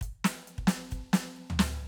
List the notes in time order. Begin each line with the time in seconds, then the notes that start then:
0.01 kick, closed hi-hat
0.24 closed hi-hat, snare
0.47 closed hi-hat
0.58 kick
0.67 closed hi-hat, snare
0.91 closed hi-hat, kick
1.13 closed hi-hat, snare
1.33 snare, closed hi-hat
1.50 floor tom
1.59 snare
1.74 snare